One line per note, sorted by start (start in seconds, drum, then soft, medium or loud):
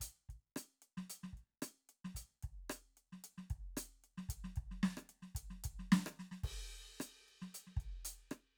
0.01 closed hi-hat medium
0.01 kick soft
0.29 kick soft
0.29 closed hi-hat soft
0.57 closed hi-hat medium
0.57 cross-stick medium
0.83 closed hi-hat soft
0.98 snare soft
1.10 closed hi-hat medium
1.24 snare soft
1.33 kick soft
1.38 closed hi-hat soft
1.63 closed hi-hat medium
1.63 cross-stick medium
1.90 closed hi-hat soft
2.05 snare soft
2.15 closed hi-hat medium
2.15 kick soft
2.43 kick soft
2.43 closed hi-hat soft
2.70 closed hi-hat medium
2.70 cross-stick medium
2.98 closed hi-hat soft
3.13 snare soft
3.25 closed hi-hat medium
3.38 snare soft
3.51 kick soft
3.51 closed hi-hat soft
3.77 closed hi-hat loud
3.77 cross-stick medium
4.04 closed hi-hat soft
4.18 snare soft
4.29 kick soft
4.29 closed hi-hat medium
4.45 snare soft
4.56 kick soft
4.56 closed hi-hat soft
4.72 snare soft
4.84 snare medium
4.98 cross-stick medium
5.10 closed hi-hat soft
5.23 snare soft
5.35 kick soft
5.35 closed hi-hat medium
5.51 snare soft
5.65 kick soft
5.65 closed hi-hat medium
5.80 snare soft
5.93 snare loud
6.07 cross-stick medium
6.20 snare soft
6.32 snare soft
6.44 kick soft
6.44 crash medium
7.01 closed hi-hat medium
7.01 cross-stick medium
7.29 closed hi-hat soft
7.42 snare soft
7.55 closed hi-hat medium
7.67 snare soft
7.77 kick soft
7.77 closed hi-hat soft
8.05 closed hi-hat loud
8.32 cross-stick medium
8.32 closed hi-hat soft